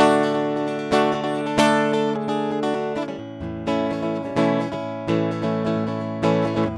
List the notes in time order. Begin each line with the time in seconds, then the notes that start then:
0.00 D3 A3 D4 F#4
0.25 D4
0.35 D4 F#4
0.58 A3 D4 F#4
0.69 A3 D4
0.79 D4 F#4
0.93 D3 A3 D4 F#4
1.14 A3 D4 F#4
1.23 A3 D4 F#4
1.35 A3 D4
1.48 A3 D4 A4
1.59 D3 A3 D4 A4
1.95 A3 D4 A4
2.17 G#4
2.30 D4 G#4
2.52 D4 G#4
2.65 A3 D4 F#4
2.75 A3 D4 F#4
2.98 D4 E4
3.10 G3 C#4 E4
3.21 A2 E3
3.43 A2 E3
3.68 E3 A3 C#4 E4
3.89 E3 A3 E4
3.96 E4
4.04 E3 A3 C#4 E4
4.24 D3 G3 C#4 E4
4.38 B2 E3 A3 C#4 E4
4.63 C#4 E4
4.74 A2 A3 C#4 E4
4.86 A2
5.09 A2 E3 A3 C#4
5.33 A3
5.44 E3 A3 C#4 E4
5.67 E3 A3 C#4 E4
5.78 E3 A3
5.89 E3 A3 C#4 E4
6.02 E3 A3
6.24 A2 E3 A3 C#4 E4
6.45 A2 E3 A3
6.49 C#4
6.56 E3 A3 C#4 E4
6.60 A2
6.68 E2 A2